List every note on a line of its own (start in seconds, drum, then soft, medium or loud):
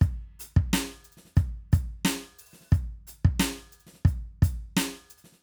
0.01 open hi-hat medium
0.01 kick loud
0.39 closed hi-hat loud
0.57 kick loud
0.73 closed hi-hat loud
0.73 snare loud
1.05 closed hi-hat medium
1.12 closed hi-hat soft
1.17 snare soft
1.25 snare soft
1.36 closed hi-hat medium
1.36 kick loud
1.36 snare soft
1.72 closed hi-hat medium
1.72 kick loud
2.05 closed hi-hat loud
2.05 snare loud
2.39 open hi-hat medium
2.46 open hi-hat soft
2.53 snare soft
2.61 snare soft
2.71 closed hi-hat medium
2.71 kick loud
2.71 snare soft
2.71 hi-hat pedal soft
3.07 closed hi-hat loud
3.25 kick loud
3.40 closed hi-hat loud
3.40 snare loud
3.72 closed hi-hat medium
3.80 closed hi-hat soft
3.87 snare soft
3.94 snare soft
4.05 closed hi-hat medium
4.05 kick loud
4.42 closed hi-hat loud
4.42 kick loud
4.77 closed hi-hat loud
4.77 snare loud
5.10 closed hi-hat medium
5.17 closed hi-hat soft
5.24 snare soft
5.33 snare soft